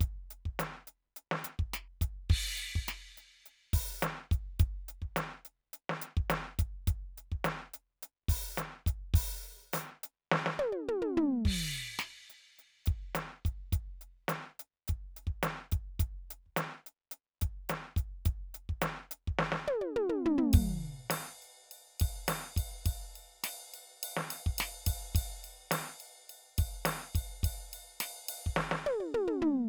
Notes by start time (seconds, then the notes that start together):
0.01 closed hi-hat, kick
0.31 closed hi-hat
0.46 kick
0.59 snare, closed hi-hat
0.88 closed hi-hat
1.17 closed hi-hat
1.32 snare
1.45 closed hi-hat
1.59 kick
1.74 snare, closed hi-hat
2.02 kick, closed hi-hat
2.30 kick, crash
2.57 closed hi-hat
2.76 kick
2.88 snare, closed hi-hat
3.18 closed hi-hat
3.46 closed hi-hat
3.74 kick, open hi-hat
4.01 snare, closed hi-hat, hi-hat pedal
4.32 kick, closed hi-hat
4.60 closed hi-hat, kick
4.89 closed hi-hat
5.02 kick
5.16 snare, closed hi-hat
5.45 closed hi-hat
5.73 closed hi-hat
5.90 snare
6.02 closed hi-hat
6.17 kick
6.30 snare, closed hi-hat
6.59 kick, closed hi-hat
6.88 closed hi-hat, kick
7.18 closed hi-hat
7.32 kick
7.45 snare, closed hi-hat
7.74 closed hi-hat
8.03 closed hi-hat
8.29 kick, open hi-hat
8.57 snare, closed hi-hat, hi-hat pedal
8.87 kick, closed hi-hat
9.14 open hi-hat, kick
9.73 snare, hi-hat pedal, open hi-hat
10.04 closed hi-hat
10.32 snare
10.46 snare
10.59 high tom
10.72 high tom
10.88 mid tom
11.02 mid tom
11.17 floor tom
11.45 kick, crash
11.74 closed hi-hat
11.99 closed hi-hat, snare
12.30 closed hi-hat
12.59 closed hi-hat
12.86 kick, closed hi-hat
13.15 snare, closed hi-hat
13.45 kick, closed hi-hat
13.73 kick, closed hi-hat
14.01 closed hi-hat
14.29 snare, closed hi-hat
14.60 closed hi-hat
14.88 kick, closed hi-hat
15.17 open hi-hat
15.27 kick
15.43 snare, closed hi-hat
15.72 kick, closed hi-hat
16.00 closed hi-hat, kick
16.31 closed hi-hat
16.46 kick
16.57 snare, closed hi-hat
16.87 closed hi-hat
17.12 closed hi-hat
17.42 kick, closed hi-hat
17.69 snare, closed hi-hat
17.97 kick, closed hi-hat
18.26 closed hi-hat, kick
18.55 closed hi-hat
18.69 kick
18.82 snare, closed hi-hat
19.11 closed hi-hat
19.28 kick
19.39 snare
19.52 snare
19.68 high tom
19.81 high tom
19.96 mid tom
20.09 mid tom
20.25 floor tom
20.38 floor tom
20.53 kick, ride
21.10 snare, ride
21.42 ride
21.71 ride
22.00 kick, ride
22.28 snare, ride
22.57 kick, ride
22.86 kick, ride
23.16 ride
23.44 snare, ride
23.74 ride
24.03 ride
24.17 snare
24.31 ride
24.46 kick
24.59 snare, ride
24.87 kick, ride
25.15 kick, ride
25.44 ride
25.71 snare, ride
26.00 ride
26.30 ride
26.58 kick, ride
26.85 snare, ride
27.15 kick, ride
27.44 kick, ride
27.73 ride
28.00 snare, ride
28.29 ride
28.47 kick
28.57 snare
28.72 snare
28.86 high tom
29.00 high tom
29.14 mid tom
29.28 mid tom
29.41 floor tom